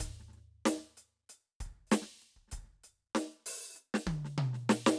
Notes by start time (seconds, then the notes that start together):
0.01 closed hi-hat, kick
0.06 kick
0.09 kick
0.20 snare
0.29 snare
0.33 snare, closed hi-hat
0.37 snare
0.66 open hi-hat, snare
0.78 snare
0.97 closed hi-hat
1.30 closed hi-hat
1.61 closed hi-hat, kick
1.66 kick
1.69 kick
1.87 hi-hat pedal
1.92 closed hi-hat, snare
2.02 snare
2.22 closed hi-hat
2.36 kick
2.48 closed hi-hat, snare
2.53 kick
2.64 snare
2.84 closed hi-hat
3.15 closed hi-hat, snare
3.46 open hi-hat
3.74 closed hi-hat, hi-hat pedal
3.94 snare
4.07 kick, high tom
4.25 snare
4.38 mid tom
4.54 snare
4.70 snare
4.87 snare